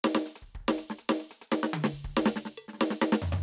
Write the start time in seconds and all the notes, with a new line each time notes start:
0.04 snare
0.15 snare
0.26 closed hi-hat
0.36 closed hi-hat
0.42 kick
0.55 kick
0.68 snare
0.78 closed hi-hat
0.90 snare
0.99 closed hi-hat
1.09 snare
1.20 closed hi-hat
1.31 closed hi-hat
1.41 closed hi-hat
1.52 snare
1.63 snare
1.73 high tom
1.84 snare
1.93 kick
2.04 kick
2.17 snare
2.26 snare
2.45 snare
2.57 percussion
2.68 snare
2.73 snare
2.81 snare
2.90 snare
3.01 snare
3.12 snare
3.22 floor tom
3.32 floor tom